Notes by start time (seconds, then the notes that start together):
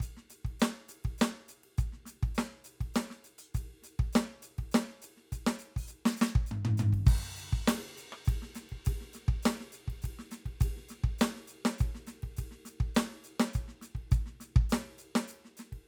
0.01 kick, hi-hat pedal, ride bell
0.18 snare
0.31 snare, hi-hat pedal, ride
0.45 kick, ride
0.60 snare, hi-hat pedal, ride bell
0.89 hi-hat pedal, ride
1.05 kick, ride
1.19 snare, hi-hat pedal, ride bell
1.36 snare
1.49 hi-hat pedal, ride
1.64 snare, ride
1.78 kick, hi-hat pedal, ride bell
1.93 snare
2.06 snare, hi-hat pedal, ride
2.23 kick, ride
2.35 snare, hi-hat pedal
2.40 ride bell
2.52 snare
2.65 hi-hat pedal, ride
2.81 kick, ride
2.95 snare, hi-hat pedal, ride bell
3.11 snare
3.25 hi-hat pedal, ride
3.39 closed hi-hat
3.55 kick, hi-hat pedal, ride
3.83 snare, hi-hat pedal, ride
4.00 kick, ride
4.13 snare, hi-hat pedal, ride bell
4.29 snare
4.43 hi-hat pedal, ride
4.59 kick, ride
4.72 snare, hi-hat pedal, ride bell
4.89 snare
5.03 hi-hat pedal, ride
5.18 snare
5.33 kick, hi-hat pedal, ride
5.47 snare
5.59 hi-hat pedal, ride
5.77 open hi-hat, kick
5.88 hi-hat pedal, ride
6.06 snare
6.17 hi-hat pedal
6.22 snare
6.36 kick
6.47 hi-hat pedal
6.52 floor tom
6.66 floor tom
6.78 floor tom, hi-hat pedal
6.93 kick, ride
7.06 kick, hi-hat pedal, crash
7.37 hi-hat pedal, ride
7.53 kick
7.68 snare, hi-hat pedal, ride
7.78 snare
7.82 snare
7.98 hi-hat pedal, ride
8.13 cross-stick
8.26 kick, hi-hat pedal
8.30 ride
8.43 snare
8.56 snare, hi-hat pedal, ride
8.70 kick, ride
8.86 kick, hi-hat pedal, ride
9.01 snare
9.14 snare, hi-hat pedal, ride
9.29 kick, ride
9.43 snare, hi-hat pedal, ride
9.61 snare
9.73 hi-hat pedal, ride
9.88 kick, ride
10.03 kick, hi-hat pedal, ride
10.19 snare
10.32 snare, hi-hat pedal, ride
10.46 kick, ride
10.61 kick, hi-hat pedal, ride
10.77 snare
10.89 snare, hi-hat pedal, ride
11.04 kick, ride
11.19 snare, hi-hat pedal, ride
11.37 snare
11.48 hi-hat pedal, ride
11.66 snare
11.79 kick, hi-hat pedal, ride
11.95 snare
12.07 snare, hi-hat pedal, ride
12.23 kick, ride
12.37 kick, hi-hat pedal, ride
12.52 snare
12.66 snare, hi-hat pedal, ride
12.81 kick, ride
12.95 snare, hi-hat pedal, ride
13.11 snare
13.13 snare
13.25 hi-hat pedal
13.40 snare
13.54 kick, hi-hat pedal, ride
13.69 snare
13.82 snare, hi-hat pedal, ride
13.96 kick, ride
14.12 kick, hi-hat pedal, ride
14.27 snare
14.41 snare, hi-hat pedal, ride
14.57 kick, ride
14.70 snare, hi-hat pedal, ride
14.99 hi-hat pedal
15.04 ride
15.16 snare
15.28 hi-hat pedal
15.34 ride
15.46 snare
15.58 snare, hi-hat pedal, ride
15.73 kick, ride